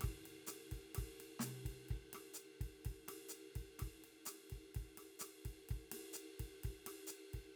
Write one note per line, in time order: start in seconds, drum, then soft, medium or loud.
0.01 kick soft
0.01 cross-stick soft
0.01 snare soft
0.01 ride medium
0.10 kick soft
0.26 ride soft
0.47 cross-stick soft
0.47 hi-hat pedal medium
0.47 ride medium
0.72 kick soft
0.72 ride soft
0.95 kick soft
0.95 cross-stick soft
0.95 ride medium
1.04 kick soft
1.21 ride soft
1.40 snare soft
1.40 hi-hat pedal medium
1.40 mid tom soft
1.40 ride medium
1.66 kick soft
1.66 ride soft
1.89 kick soft
1.89 ride soft
1.97 kick soft
2.14 cross-stick soft
2.14 ride medium
2.34 hi-hat pedal medium
2.34 ride soft
2.61 kick soft
2.61 ride soft
2.66 kick soft
2.85 kick soft
2.85 ride soft
2.91 kick soft
3.09 cross-stick soft
3.09 ride medium
3.29 hi-hat pedal medium
3.29 ride soft
3.56 kick soft
3.56 ride soft
3.62 kick soft
3.80 kick soft
3.80 cross-stick soft
3.80 ride medium
3.87 kick soft
4.04 ride soft
4.26 cross-stick soft
4.26 snare soft
4.26 hi-hat pedal medium
4.26 ride medium
4.50 kick soft
4.50 ride soft
4.75 kick soft
4.75 ride soft
4.82 kick soft
4.98 cross-stick soft
4.98 ride medium
5.20 cross-stick soft
5.20 hi-hat pedal medium
5.20 ride medium
5.46 kick soft
5.46 ride soft
5.69 kick soft
5.69 ride soft
5.77 kick soft
5.92 snare soft
5.92 ride medium
6.14 hi-hat pedal medium
6.14 ride soft
6.40 kick soft
6.40 ride soft
6.64 kick soft
6.64 ride medium
6.70 kick soft
6.87 cross-stick soft
6.87 ride medium
7.07 hi-hat pedal medium
7.07 ride soft
7.34 kick soft
7.34 ride soft